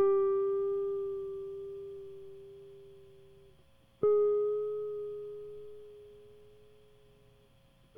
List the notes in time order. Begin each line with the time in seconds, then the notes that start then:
0.00 G4
4.04 G#4